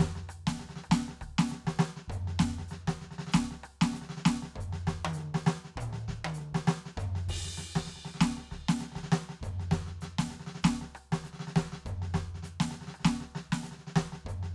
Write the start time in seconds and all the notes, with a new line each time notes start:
0.01 kick, snare
0.09 kick
0.17 snare
0.30 cross-stick, hi-hat pedal
0.48 kick, snare
0.61 snare
0.70 snare
0.77 snare
0.85 cross-stick
0.91 kick, snare, hi-hat pedal
1.09 snare
1.23 kick, cross-stick
1.32 kick
1.40 snare
1.49 hi-hat pedal
1.53 snare
1.66 kick, snare
1.80 snare
1.98 snare
2.09 kick, floor tom, hi-hat pedal
2.29 snare
2.41 kick, snare
2.46 kick, cross-stick
2.52 kick
2.60 snare
2.70 snare, hi-hat pedal
2.88 kick, snare
3.03 snare
3.12 snare
3.20 snare
3.28 snare
3.34 kick, snare, hi-hat pedal
3.42 kick
3.52 snare
3.65 cross-stick
3.83 kick, snare
3.95 snare, hi-hat pedal
4.03 snare
4.11 snare
4.18 snare
4.27 kick, snare
4.44 snare
4.57 kick, floor tom
4.62 kick, hi-hat pedal
4.68 kick
4.74 snare
4.89 kick, snare
4.97 kick
5.06 high tom
5.15 hi-hat pedal
5.19 snare
5.34 kick, snare
5.48 snare
5.66 snare
5.78 kick, mid tom
5.82 kick, hi-hat pedal
5.86 kick
5.94 snare
6.09 kick, snare
6.19 kick
6.26 high tom
6.35 hi-hat pedal
6.40 snare
6.54 kick, snare
6.69 snare
6.87 snare
6.98 kick, floor tom, hi-hat pedal
7.05 kick
7.07 kick
7.17 snare
7.30 kick, crash
7.37 kick
7.46 snare
7.59 snare, hi-hat pedal
7.77 kick, snare
7.88 snare
7.97 snare
8.06 snare
8.16 snare
8.22 kick, snare, hi-hat pedal
8.28 kick
8.38 snare
8.53 kick, snare
8.62 kick
8.70 snare
8.80 snare, hi-hat pedal
8.93 snare
8.97 kick, snare
9.05 snare
9.13 snare
9.30 snare
9.43 kick, floor tom, hi-hat pedal
9.51 kick
9.61 snare
9.73 kick, snare
9.83 kick
9.88 snare
10.02 snare, hi-hat pedal
10.20 kick, snare
10.32 snare
10.41 snare
10.48 snare
10.56 snare
10.65 kick, snare, hi-hat pedal
10.71 kick
10.83 snare
10.96 cross-stick
11.13 kick, snare
11.25 snare, hi-hat pedal
11.34 snare
11.41 snare
11.49 snare
11.57 kick, snare
11.74 snare
11.87 kick, floor tom, hi-hat pedal
12.03 snare
12.16 kick, snare
12.23 kick
12.26 kick
12.36 snare
12.44 snare, hi-hat pedal
12.61 kick, snare
12.72 snare
12.89 snare
12.95 cross-stick
13.01 snare
13.06 kick, snare, hi-hat pedal
13.22 snare
13.36 snare
13.51 kick, snare
13.65 snare, hi-hat pedal
13.73 snare
13.80 snare
13.88 snare
13.97 kick, snare
14.14 snare
14.27 kick, floor tom, hi-hat pedal
14.44 snare